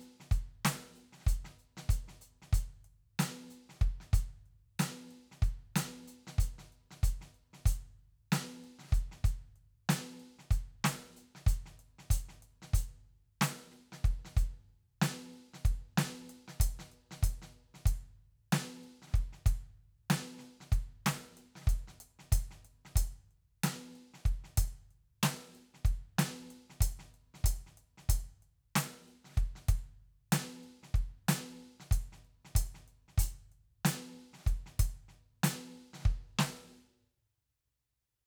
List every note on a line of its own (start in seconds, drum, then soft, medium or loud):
0.01 closed hi-hat soft
0.20 snare soft
0.32 closed hi-hat soft
0.32 kick medium
0.65 closed hi-hat loud
0.65 snare loud
0.96 closed hi-hat soft
1.13 snare soft
1.18 snare soft
1.21 snare soft
1.27 closed hi-hat medium
1.27 kick medium
1.45 snare soft
1.59 closed hi-hat soft
1.78 snare medium
1.90 closed hi-hat medium
1.90 kick medium
2.09 snare soft
2.22 closed hi-hat soft
2.42 snare soft
2.53 closed hi-hat medium
2.53 kick medium
2.85 closed hi-hat soft
3.20 closed hi-hat loud
3.20 snare loud
3.51 closed hi-hat soft
3.70 snare soft
3.74 snare soft
3.78 kick medium
3.78 snare soft
3.82 closed hi-hat soft
4.01 snare soft
4.14 closed hi-hat medium
4.14 kick medium
4.46 closed hi-hat soft
4.80 closed hi-hat loud
4.80 snare loud
5.11 closed hi-hat soft
5.32 snare soft
5.43 closed hi-hat soft
5.43 kick medium
5.49 ride soft
5.76 closed hi-hat loud
5.76 snare loud
6.08 closed hi-hat soft
6.28 snare medium
6.39 closed hi-hat medium
6.39 kick medium
6.59 snare soft
6.73 closed hi-hat soft
6.91 snare soft
7.04 closed hi-hat medium
7.04 kick medium
7.22 snare soft
7.35 closed hi-hat soft
7.54 snare soft
7.66 closed hi-hat loud
7.66 kick medium
8.33 closed hi-hat medium
8.33 snare loud
8.63 snare soft
8.63 closed hi-hat soft
8.79 snare soft
8.84 snare soft
8.87 snare soft
8.89 kick medium
8.89 snare soft
8.94 closed hi-hat medium
9.12 snare soft
9.25 closed hi-hat medium
9.25 kick medium
9.56 closed hi-hat soft
9.90 closed hi-hat loud
9.90 snare loud
10.20 closed hi-hat soft
10.39 snare soft
10.51 closed hi-hat medium
10.51 kick medium
10.85 closed hi-hat loud
10.85 snare loud
11.16 closed hi-hat soft
11.16 snare soft
11.36 snare soft
11.47 closed hi-hat medium
11.47 kick medium
11.66 snare soft
11.80 closed hi-hat soft
11.99 snare soft
12.11 closed hi-hat loud
12.11 kick medium
12.29 snare soft
12.43 closed hi-hat soft
12.63 snare soft
12.74 closed hi-hat loud
12.74 kick medium
13.42 closed hi-hat loud
13.42 snare loud
13.72 snare soft
13.72 closed hi-hat soft
13.93 snare soft
14.05 kick medium
14.05 closed hi-hat soft
14.25 snare soft
14.37 closed hi-hat medium
14.37 kick medium
15.02 closed hi-hat medium
15.02 snare loud
15.34 closed hi-hat soft
15.54 snare soft
15.66 kick medium
15.66 closed hi-hat medium
15.98 snare loud
15.98 closed hi-hat medium
16.29 snare soft
16.29 closed hi-hat soft
16.48 snare soft
16.61 kick medium
16.61 closed hi-hat loud
16.80 snare soft
16.92 closed hi-hat soft
17.12 snare medium
17.23 kick medium
17.23 closed hi-hat medium
17.42 snare soft
17.53 closed hi-hat soft
17.75 snare soft
17.86 kick medium
17.86 closed hi-hat medium
18.53 snare loud
18.53 closed hi-hat medium
18.83 snare soft
18.83 closed hi-hat soft
19.03 snare soft
19.07 snare soft
19.11 snare soft
19.13 kick medium
19.13 snare soft
19.13 closed hi-hat soft
19.33 snare soft
19.47 kick medium
19.47 closed hi-hat medium
20.11 snare loud
20.11 closed hi-hat medium
20.39 snare soft
20.39 closed hi-hat soft
20.61 snare soft
20.72 kick medium
20.72 closed hi-hat medium
21.07 snare loud
21.07 closed hi-hat medium
21.38 snare soft
21.38 closed hi-hat soft
21.56 snare soft
21.62 snare soft
21.66 kick medium
21.66 snare soft
21.66 closed hi-hat medium
21.88 snare soft
22.01 closed hi-hat medium
22.20 snare soft
22.33 kick medium
22.33 closed hi-hat loud
22.51 snare soft
22.63 snare soft
22.63 closed hi-hat soft
22.86 snare soft
22.96 kick medium
22.96 closed hi-hat loud
23.31 closed hi-hat soft
23.64 snare loud
23.64 closed hi-hat loud
23.96 closed hi-hat soft
24.14 snare soft
24.18 snare soft
24.26 kick medium
24.26 closed hi-hat soft
24.45 snare soft
24.58 kick medium
24.58 closed hi-hat loud
24.91 closed hi-hat soft
25.24 snare loud
25.24 closed hi-hat loud
25.56 closed hi-hat soft
25.75 snare soft
25.85 kick medium
25.85 closed hi-hat medium
26.19 snare loud
26.19 closed hi-hat loud
26.51 closed hi-hat soft
26.70 snare soft
26.81 kick medium
26.81 closed hi-hat loud
27.00 snare soft
27.15 closed hi-hat soft
27.35 snare soft
27.45 kick medium
27.45 closed hi-hat loud
27.67 snare soft
27.78 closed hi-hat soft
27.98 snare soft
28.10 kick medium
28.10 closed hi-hat loud
28.43 closed hi-hat soft
28.76 closed hi-hat loud
28.76 snare loud
29.04 snare soft
29.09 closed hi-hat soft
29.25 snare soft
29.29 snare soft
29.32 snare soft
29.38 kick medium
29.38 closed hi-hat soft
29.56 snare soft
29.69 kick medium
29.69 closed hi-hat medium
30.33 snare loud
30.33 closed hi-hat loud
30.64 closed hi-hat soft
30.84 snare soft
30.95 kick medium
30.95 closed hi-hat soft
31.29 closed hi-hat loud
31.29 snare loud
31.60 closed hi-hat soft
31.80 snare soft
31.92 kick medium
31.92 closed hi-hat medium
32.13 snare soft
32.25 closed hi-hat soft
32.45 snare soft
32.56 kick medium
32.56 closed hi-hat loud
32.75 snare soft
32.88 closed hi-hat soft
33.09 snare soft
33.18 closed hi-hat loud
33.18 kick medium
33.52 closed hi-hat soft
33.85 closed hi-hat loud
33.85 snare loud
34.34 snare soft
34.39 snare soft
34.42 snare soft
34.45 kick medium
34.45 snare soft
34.48 snare soft
34.48 closed hi-hat medium
34.67 snare soft
34.80 kick medium
34.80 closed hi-hat loud
35.09 snare soft
35.44 closed hi-hat loud
35.44 snare loud
35.76 closed hi-hat soft
35.94 snare soft
35.98 snare soft
36.01 snare soft
36.06 kick medium
36.39 snare loud